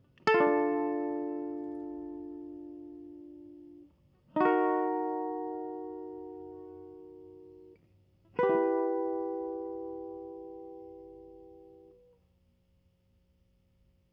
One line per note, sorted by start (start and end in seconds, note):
0.28 3.08 A4
0.35 3.87 F4
0.41 3.90 D4
4.37 7.78 D#4
4.41 7.78 F#4
4.46 7.79 A#4
8.40 12.19 B4
8.44 12.00 G4
8.50 11.96 E4